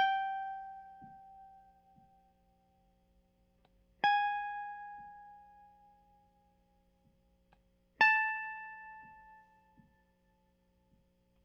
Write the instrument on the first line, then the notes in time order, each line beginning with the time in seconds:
electric guitar
0.00 G5
4.05 G#5
8.02 A5